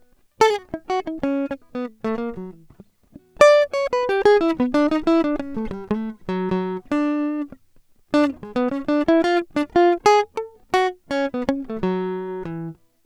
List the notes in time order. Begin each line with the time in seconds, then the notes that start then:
0.42 A4
0.52 G#4
0.64 F#4
0.75 E4
0.91 F#4
1.08 E4
1.24 C#4
1.52 C#4
1.76 B3
2.05 A3
2.16 A#3
2.36 F#3
3.42 D5
3.75 C#5
3.94 B4
4.10 G4
4.27 G#4
4.42 E4
4.61 B3
4.75 D4
4.93 D#4
5.08 E4
5.21 D4
5.41 C#4
5.56 A3
5.72 G3
5.92 A3
6.30 F#3
6.53 F#3
6.92 D4
8.14 D4
8.44 G#3
8.57 B3
8.70 C#4
8.89 D4
9.09 E4
9.26 F4
9.57 D4
9.77 F4
10.06 G#4
10.38 A4
10.74 F#4
11.12 C#4
11.35 B3
11.49 C#4
11.84 F#3
12.47 E3